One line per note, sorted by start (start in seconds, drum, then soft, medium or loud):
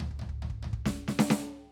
0.00 floor tom medium
0.00 high tom medium
0.11 kick soft
0.19 floor tom medium
0.19 high tom medium
0.29 kick soft
0.42 floor tom medium
0.42 high tom medium
0.50 kick soft
0.63 floor tom medium
0.63 high tom medium
0.73 kick medium
0.86 snare loud
1.08 snare medium
1.19 snare loud
1.30 snare loud